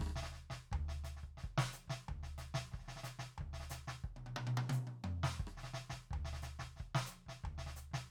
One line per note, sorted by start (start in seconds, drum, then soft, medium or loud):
0.01 kick medium
0.01 cross-stick medium
0.07 cross-stick soft
0.10 cross-stick soft
0.17 snare medium
0.23 snare medium
0.30 snare soft
0.33 snare soft
0.51 kick soft
0.51 snare medium
0.72 kick soft
0.72 floor tom medium
0.89 snare soft
1.05 snare soft
1.05 hi-hat pedal medium
1.17 snare soft
1.24 kick soft
1.38 snare soft
1.45 kick soft
1.59 snare loud
1.73 snare soft
1.73 hi-hat pedal medium
1.88 kick soft
1.88 snare medium
2.09 kick soft
2.09 floor tom medium
2.24 snare soft
2.39 snare soft
2.39 hi-hat pedal medium
2.55 kick soft
2.55 snare medium
2.72 kick soft
2.72 snare soft
2.80 snare soft
2.85 snare soft
2.89 snare soft
2.97 snare soft
3.04 snare medium
3.04 hi-hat pedal medium
3.20 kick soft
3.20 snare medium
3.39 kick soft
3.39 floor tom medium
3.54 snare soft
3.61 snare soft
3.71 snare medium
3.71 hi-hat pedal loud
3.88 snare medium
4.05 kick soft
4.17 high tom medium
4.37 high tom medium
4.48 high tom loud
4.58 high tom loud
4.70 hi-hat pedal medium
4.70 high tom loud
4.88 high tom medium
5.05 mid tom loud
5.24 snare medium
5.40 kick medium
5.40 snare soft
5.46 kick soft
5.46 cross-stick soft
5.53 snare soft
5.58 snare soft
5.64 snare soft
5.74 snare medium
5.90 kick soft
5.90 snare medium
6.12 kick soft
6.12 floor tom medium
6.26 snare soft
6.34 snare soft
6.43 snare soft
6.43 hi-hat pedal medium
6.60 kick soft
6.60 snare medium
6.77 kick soft
6.77 snare soft
6.96 snare medium
7.07 snare soft
7.07 hi-hat pedal medium
7.27 kick soft
7.27 snare soft
7.45 kick soft
7.45 floor tom medium
7.59 snare soft
7.67 snare soft
7.77 snare soft
7.77 hi-hat pedal medium
7.92 kick soft
7.92 snare medium